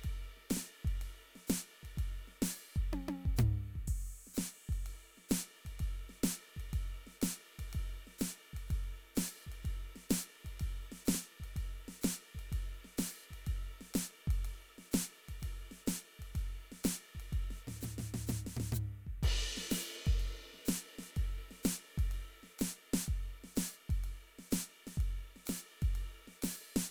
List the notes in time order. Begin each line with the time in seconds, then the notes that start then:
0.01 kick, hi-hat pedal, ride
0.37 snare
0.50 snare, hi-hat pedal, ride
0.57 snare
0.85 kick, ride
1.02 ride
1.36 snare
1.47 snare, hi-hat pedal, ride
1.83 kick, ride
1.98 kick, ride
2.28 snare
2.42 snare, hi-hat pedal, ride
2.76 kick
2.93 high tom
3.08 closed hi-hat, high tom
3.26 kick
3.37 floor tom, hi-hat pedal
3.76 kick
3.88 kick, crash
4.27 snare
4.34 hi-hat pedal, ride
4.38 snare
4.69 kick, ride
4.86 ride
5.18 snare
5.29 snare, hi-hat pedal, ride
5.66 kick, ride
5.80 kick, ride
6.09 snare
6.24 snare, hi-hat pedal, ride
6.57 kick, ride
6.73 kick, ride
7.07 snare
7.22 snare, hi-hat pedal, ride
7.59 kick, ride
7.69 hi-hat pedal
7.73 kick, ride
8.07 snare
8.19 snare, hi-hat pedal, ride
8.54 kick, ride
8.67 kick, hi-hat pedal, ride
9.15 snare, hi-hat pedal, ride
9.47 kick
9.52 ride
9.62 kick, hi-hat pedal, ride
9.96 snare
10.10 snare, hi-hat pedal, ride
10.45 kick, ride
10.60 kick, ride
10.92 snare
11.05 snare, hi-hat pedal, ride
11.15 snare
11.40 kick, ride
11.56 kick, ride
11.88 snare
12.02 snare, hi-hat pedal, ride
12.35 kick
12.39 ride
12.52 kick, ride
12.85 snare
12.98 snare, hi-hat pedal, ride
13.31 kick, ride
13.47 kick, ride
13.81 snare
13.94 snare, hi-hat pedal, ride
14.28 kick, ride
14.42 hi-hat pedal, ride
14.78 snare
14.92 snare, hi-hat pedal, ride
15.29 kick, ride
15.39 hi-hat pedal
15.43 kick, ride
15.71 snare
15.87 snare, hi-hat pedal, ride
16.20 kick, ride
16.35 kick, ride
16.72 snare
16.84 snare, hi-hat pedal, ride
17.15 kick
17.20 ride
17.33 kick, ride
17.51 snare
17.67 snare, floor tom
17.81 snare, floor tom, hi-hat pedal
17.98 snare, floor tom
18.14 snare, floor tom
18.27 snare, floor tom, hi-hat pedal
18.47 snare
18.57 snare, floor tom
18.72 floor tom, hi-hat pedal
19.07 kick
19.23 kick, ride
19.57 snare
19.70 snare, hi-hat pedal, ride
20.06 kick, ride
20.20 ride
20.54 snare
20.65 snare, hi-hat pedal, ride
20.99 snare
21.04 ride
21.17 kick, ride
21.51 snare
21.63 snare, hi-hat pedal, ride
21.98 kick, ride
22.09 hi-hat pedal, ride
22.43 snare
22.59 snare, hi-hat pedal, ride
22.94 snare, ride
23.07 kick, ride
23.44 snare
23.56 snare, hi-hat pedal, ride
23.90 kick, ride
24.04 ride
24.39 snare
24.51 snare, hi-hat pedal, ride
24.87 snare, ride
24.98 kick, ride
25.36 snare
25.46 snare, hi-hat pedal, ride
25.82 kick, ride
25.93 hi-hat pedal, ride
26.28 snare
26.42 snare, hi-hat pedal, ride
26.76 snare, ride